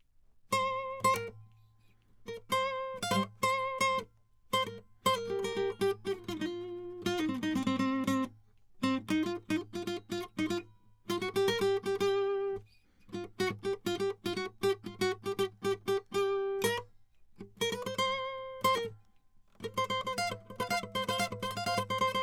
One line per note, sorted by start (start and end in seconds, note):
0.53 1.02 C5
1.05 1.14 C5
1.15 1.33 A#4
2.29 2.42 A#4
2.52 3.02 C5
3.03 3.12 F5
3.11 3.28 C5
3.11 3.29 E5
3.44 3.81 C5
3.81 4.04 C5
4.54 4.64 C5
4.64 4.83 A#4
5.06 5.16 C5
5.16 5.41 A#4
5.31 5.54 G4
5.45 5.74 A#4
5.57 5.74 G4
5.82 5.96 G4
6.07 6.14 G4
6.29 6.37 E4
6.42 7.04 F4
7.07 7.19 F4
7.20 7.34 D#4
7.30 7.42 C4
7.43 7.61 D#4
7.56 7.65 C4
7.67 7.80 C4
7.80 8.06 C4
8.09 8.27 C4
8.84 9.01 C4
9.11 9.25 D#4
9.27 9.39 F4
9.51 9.66 E4
9.76 9.88 F4
9.88 10.01 F4
10.12 10.29 F4
10.39 10.48 D#4
10.51 10.67 F4
11.10 11.20 F4
11.22 11.36 F#4
11.36 11.54 G4
11.48 11.65 A#4
11.62 11.80 G4
11.87 11.98 G4
12.08 12.61 G4
13.15 13.29 F4
13.40 13.55 F#4
13.65 13.79 G4
13.87 13.98 F4
14.01 14.14 G4
14.26 14.36 F4
14.38 14.50 F#4
14.64 14.77 G4
14.87 15.02 F4
15.02 15.16 F#4
15.27 15.35 G4
15.39 15.50 G4
15.65 15.77 G4
15.88 16.00 G4
16.15 16.68 G4
16.64 16.81 A#4
17.62 17.73 A#4
17.73 17.84 B4
17.87 17.97 C5
17.99 18.63 C5
18.65 18.75 C5
18.75 18.89 A#4
19.65 19.78 C5
19.78 19.90 C5
19.90 20.03 C5
20.07 20.38 C5
20.18 20.29 F5
20.29 20.71 E5
20.71 20.79 F5
20.79 20.88 E5
20.89 21.00 E5
20.95 21.06 C5
21.09 21.29 C5
21.09 21.20 F5
21.20 21.30 F5
21.33 21.46 E5
21.43 21.51 C5
21.52 21.77 C5
21.57 21.67 F5
21.67 21.78 F5
21.78 21.86 C5
21.78 21.94 E5
21.91 21.99 C5
22.00 22.09 C5
22.09 22.23 C5